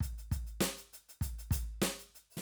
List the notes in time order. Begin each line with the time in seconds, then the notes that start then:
0.01 closed hi-hat, kick
0.18 closed hi-hat
0.32 closed hi-hat, kick
0.47 closed hi-hat
0.61 closed hi-hat, snare
0.78 open hi-hat
0.93 closed hi-hat
1.09 closed hi-hat
1.22 closed hi-hat, kick
1.39 closed hi-hat
1.51 open hi-hat, kick
1.82 open hi-hat, snare, hi-hat pedal
1.99 closed hi-hat
2.15 closed hi-hat
2.30 open hi-hat
2.37 snare